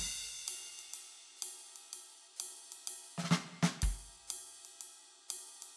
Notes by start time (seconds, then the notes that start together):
0.45 hi-hat pedal, ride
0.79 ride
0.94 ride
1.37 hi-hat pedal
1.42 ride
1.76 ride
1.93 ride
2.36 hi-hat pedal, ride
2.72 ride
2.87 ride
3.18 snare
3.23 snare, hi-hat pedal
3.30 snare
3.63 snare
3.82 kick, ride
4.27 hi-hat pedal, ride
4.65 ride
4.81 ride
5.28 hi-hat pedal, ride
5.62 ride